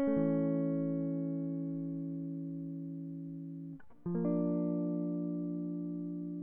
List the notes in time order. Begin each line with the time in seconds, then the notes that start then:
0.00 C#4
0.08 A3
0.18 E3
4.07 F3
4.16 A#3
4.25 D4